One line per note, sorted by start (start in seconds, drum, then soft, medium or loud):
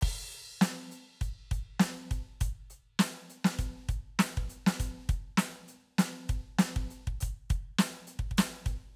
0.01 kick medium
0.01 hi-hat pedal medium
0.01 crash loud
0.32 closed hi-hat medium
0.61 closed hi-hat loud
0.61 snare loud
0.92 closed hi-hat medium
1.21 closed hi-hat medium
1.21 kick medium
1.52 closed hi-hat medium
1.52 kick medium
1.80 closed hi-hat medium
1.80 snare loud
2.11 closed hi-hat medium
2.11 kick medium
2.41 closed hi-hat loud
2.41 kick medium
2.70 closed hi-hat medium
2.99 closed hi-hat loud
2.99 snare loud
3.30 closed hi-hat medium
3.45 snare loud
3.59 closed hi-hat medium
3.59 kick medium
3.89 closed hi-hat medium
3.89 kick medium
4.19 closed hi-hat medium
4.19 snare loud
4.37 kick medium
4.50 closed hi-hat medium
4.67 snare loud
4.80 closed hi-hat loud
4.80 kick medium
5.09 closed hi-hat medium
5.09 kick medium
5.38 closed hi-hat loud
5.38 snare loud
5.68 closed hi-hat medium
5.99 closed hi-hat loud
5.99 snare loud
6.29 closed hi-hat medium
6.29 kick medium
6.59 closed hi-hat medium
6.59 snare loud
6.76 kick medium
6.91 closed hi-hat medium
7.07 kick medium
7.21 closed hi-hat loud
7.21 kick medium
7.50 closed hi-hat medium
7.50 kick medium
7.79 closed hi-hat medium
7.79 snare loud
8.07 closed hi-hat medium
8.19 kick medium
8.31 kick soft
8.38 closed hi-hat loud
8.38 snare loud
8.66 closed hi-hat medium
8.66 kick medium